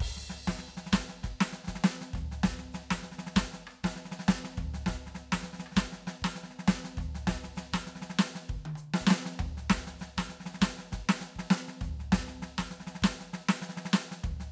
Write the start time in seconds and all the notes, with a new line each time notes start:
0.01 kick, crash
0.08 kick
0.17 snare
0.30 snare, hi-hat pedal
0.48 kick, snare
0.59 snare
0.68 snare
0.78 snare
0.87 snare
0.93 kick, snare, hi-hat pedal
0.99 kick
1.10 snare
1.24 kick, snare
1.33 kick
1.41 snare
1.51 snare, hi-hat pedal
1.65 snare
1.68 kick, snare
1.76 snare
1.84 snare
2.02 snare
2.14 kick, floor tom, hi-hat pedal
2.22 kick
2.32 snare
2.44 kick, snare
2.54 kick
2.59 snare
2.73 snare, hi-hat pedal
2.91 kick, snare
3.03 snare
3.12 snare
3.19 snare
3.27 snare
3.36 kick, snare, hi-hat pedal
3.42 kick
3.54 snare
3.68 cross-stick
3.84 kick, snare
3.97 snare, hi-hat pedal
4.06 snare
4.12 snare
4.20 snare
4.29 kick, snare
4.45 snare
4.58 kick, floor tom, hi-hat pedal
4.74 snare
4.87 kick, snare
4.94 kick
4.97 kick
5.07 snare
5.15 snare, hi-hat pedal
5.33 kick, snare
5.44 snare
5.60 snare
5.67 cross-stick
5.72 snare
5.77 kick, snare, hi-hat pedal
5.93 snare
6.08 snare
6.22 kick, snare
6.36 snare, hi-hat pedal
6.44 snare
6.51 snare
6.59 snare
6.68 kick, snare
6.85 snare
6.98 kick, floor tom, hi-hat pedal
7.15 snare
7.28 kick, snare
7.38 kick
7.44 snare
7.56 snare, hi-hat pedal
7.74 kick, snare
7.87 snare
7.96 snare
8.02 snare
8.10 snare
8.19 snare, hi-hat pedal
8.36 snare
8.49 kick, high tom
8.56 kick
8.60 kick
8.66 high tom
8.76 hi-hat pedal, high tom
8.94 snare
9.01 kick
9.07 snare
9.11 snare
9.26 snare
9.40 kick, hi-hat pedal, floor tom
9.49 kick
9.58 snare
9.70 kick, snare
9.78 kick
9.87 snare
10.00 snare, hi-hat pedal
10.18 kick, snare
10.30 snare
10.41 snare
10.46 snare
10.55 snare
10.62 kick, snare, hi-hat pedal
10.79 snare
10.93 kick, snare
11.02 kick
11.09 snare
11.19 snare, hi-hat pedal
11.36 kick, snare
11.51 snare
11.69 snare
11.82 kick, floor tom, hi-hat pedal
12.00 snare
12.13 kick, snare
12.23 kick
12.28 snare
12.42 snare, hi-hat pedal
12.59 kick, snare
12.71 snare
12.80 snare
12.87 snare
12.95 snare
13.03 kick, snare, hi-hat pedal
13.21 snare
13.34 snare
13.49 snare
13.59 snare, hi-hat pedal
13.70 snare
13.76 snare
13.86 snare
13.94 snare
14.12 snare
14.24 kick, floor tom, hi-hat pedal
14.34 kick
14.41 snare